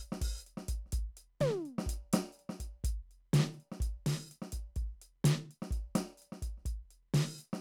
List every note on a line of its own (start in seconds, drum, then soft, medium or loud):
0.01 hi-hat pedal medium
0.12 snare soft
0.21 open hi-hat loud
0.21 kick soft
0.27 kick soft
0.40 hi-hat pedal medium
0.46 closed hi-hat soft
0.57 snare soft
0.68 closed hi-hat medium
0.68 kick soft
0.86 snare soft
0.92 closed hi-hat medium
0.92 kick soft
0.99 kick soft
1.17 closed hi-hat medium
1.40 snare medium
1.40 hi-hat pedal medium
1.40 high tom loud
1.50 snare soft
1.60 hi-hat pedal soft
1.65 closed hi-hat soft
1.78 snare medium
1.86 closed hi-hat medium
1.86 kick soft
2.13 closed hi-hat loud
2.13 snare medium
2.32 hi-hat pedal soft
2.39 closed hi-hat soft
2.49 snare soft
2.60 closed hi-hat medium
2.60 kick soft
2.84 closed hi-hat medium
2.84 kick soft
2.90 kick soft
3.11 closed hi-hat soft
3.33 closed hi-hat loud
3.33 snare loud
3.39 snare soft
3.52 hi-hat pedal soft
3.60 closed hi-hat soft
3.72 snare soft
3.80 closed hi-hat medium
3.80 kick soft
4.06 open hi-hat loud
4.06 snare medium
4.26 hi-hat pedal medium
4.31 closed hi-hat soft
4.42 snare soft
4.52 closed hi-hat medium
4.52 kick soft
4.76 closed hi-hat soft
4.76 kick soft
4.82 kick soft
4.86 snare soft
5.01 closed hi-hat soft
5.24 closed hi-hat loud
5.24 snare loud
5.51 closed hi-hat soft
5.62 snare soft
5.70 closed hi-hat medium
5.70 kick soft
5.95 closed hi-hat loud
5.95 snare medium
6.17 hi-hat pedal medium
6.22 closed hi-hat soft
6.32 snare soft
6.42 closed hi-hat medium
6.42 kick soft
6.57 snare soft
6.65 closed hi-hat medium
6.65 kick soft
6.90 closed hi-hat soft
7.14 open hi-hat loud
7.14 snare loud
7.38 closed hi-hat soft
7.38 hi-hat pedal medium
7.53 snare soft